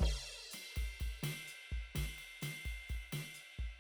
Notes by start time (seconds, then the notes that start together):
0.01 kick, crash
0.51 snare, hi-hat pedal, ride
0.76 kick, ride
0.82 kick
0.99 kick, hi-hat pedal, ride
1.06 kick
1.23 snare, ride
1.48 hi-hat pedal
1.72 kick
1.77 kick
1.95 kick, snare, hi-hat pedal, ride
2.02 kick
2.18 ride
2.42 snare, hi-hat pedal, ride
2.65 kick, ride
2.88 kick, hi-hat pedal, ride
2.95 kick
3.13 snare, ride
3.34 hi-hat pedal
3.59 kick, ride
3.64 kick